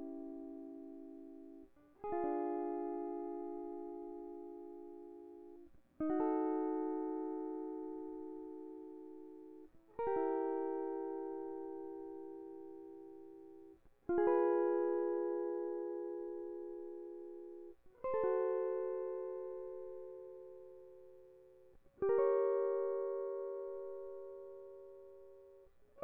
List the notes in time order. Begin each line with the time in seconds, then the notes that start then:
2.05 G#4
2.13 F4
2.25 D4
6.02 D#4
6.12 F#4
6.21 A4
9.99 A#4
10.09 G4
10.17 E4
14.14 F4
14.18 G#4
14.29 B4
18.05 C5
18.16 A4
18.25 F#4
22.03 G4
22.10 A#4
22.21 C#5